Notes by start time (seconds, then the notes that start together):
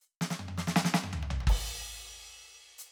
0.01 hi-hat pedal
0.21 snare
0.30 snare
0.39 high tom
0.48 high tom
0.58 snare
0.67 snare
0.76 snare
0.85 snare
0.94 snare
1.04 high tom
1.13 mid tom
1.23 high tom
1.30 floor tom
1.40 floor tom
1.43 kick, floor tom
1.49 crash
2.78 hi-hat pedal